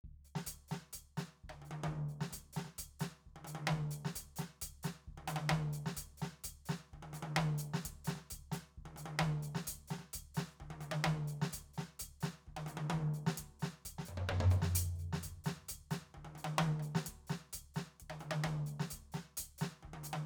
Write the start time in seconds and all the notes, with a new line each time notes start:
0.04 kick
0.24 hi-hat pedal
0.35 snare
0.46 closed hi-hat, kick
0.68 snare, hi-hat pedal
0.93 closed hi-hat, kick
1.17 snare, hi-hat pedal
1.44 kick
1.49 high tom
1.62 hi-hat pedal, high tom
1.71 high tom
1.83 high tom
1.87 kick
2.08 hi-hat pedal
2.21 snare
2.31 closed hi-hat, kick, snare
2.53 snare, hi-hat pedal
2.64 snare
2.78 closed hi-hat, kick
2.99 snare, hi-hat pedal
3.26 kick
3.36 high tom
3.44 hi-hat pedal, high tom
3.55 high tom
3.67 high tom
3.72 kick
3.91 hi-hat pedal
4.05 snare
4.15 closed hi-hat, kick
4.36 snare, hi-hat pedal
4.61 closed hi-hat, kick
4.83 snare, hi-hat pedal
5.07 kick
5.17 high tom
5.28 hi-hat pedal, high tom
5.36 high tom
5.49 kick, high tom
5.73 hi-hat pedal, high tom
5.86 snare
5.97 closed hi-hat, kick
6.17 hi-hat pedal
6.22 snare
6.33 snare
6.44 closed hi-hat, kick
6.65 snare, hi-hat pedal
6.93 kick, high tom
7.02 high tom
7.13 hi-hat pedal, high tom
7.22 high tom
7.36 kick, high tom
7.58 hi-hat pedal
7.74 snare
7.85 kick, closed hi-hat
8.04 snare, hi-hat pedal
8.15 snare
8.30 closed hi-hat, kick
8.52 snare, hi-hat pedal
8.77 kick
8.85 high tom
8.96 hi-hat pedal, high tom
9.06 high tom
9.19 kick, high tom
9.42 hi-hat pedal
9.55 snare
9.67 closed hi-hat, kick
9.87 snare, hi-hat pedal
9.98 snare
10.13 closed hi-hat, kick
10.34 snare, hi-hat pedal
10.60 kick, high tom
10.81 hi-hat pedal, high tom
10.91 high tom
11.04 kick, high tom
11.27 hi-hat pedal
11.42 snare
11.53 closed hi-hat, kick
11.73 hi-hat pedal
11.78 snare
11.99 closed hi-hat, kick
12.20 snare, hi-hat pedal
12.47 kick, high tom
12.56 high tom
12.66 hi-hat pedal, high tom
12.77 high tom
12.90 kick, high tom
13.14 hi-hat pedal
13.26 snare
13.37 kick, closed hi-hat
13.59 snare, hi-hat pedal
13.85 closed hi-hat, kick
13.98 snare
14.05 floor tom, hi-hat pedal
14.17 floor tom
14.29 kick, floor tom
14.40 floor tom
14.50 floor tom, hi-hat pedal
14.62 snare
14.75 closed hi-hat, kick
14.95 hi-hat pedal, open hi-hat
15.13 snare
15.23 closed hi-hat, kick
15.44 snare, hi-hat pedal
15.68 closed hi-hat, kick
15.90 snare, hi-hat pedal
16.14 kick, high tom
16.25 high tom
16.35 hi-hat pedal, high tom
16.44 high tom
16.58 kick, high tom
16.79 hi-hat pedal, high tom
16.95 snare
17.06 kick, closed hi-hat
17.27 snare, hi-hat pedal
17.41 snare
17.53 closed hi-hat, kick
17.74 snare, hi-hat pedal
17.86 cross-stick
18.00 kick, closed hi-hat
18.10 high tom
18.19 hi-hat pedal, high tom
18.31 high tom
18.44 kick, high tom
18.66 hi-hat pedal
18.80 snare
18.90 closed hi-hat, kick
19.12 snare, hi-hat pedal
19.37 closed hi-hat, kick
19.58 snare, hi-hat pedal
19.83 kick, high tom
19.93 high tom
20.03 hi-hat pedal, high tom
20.13 high tom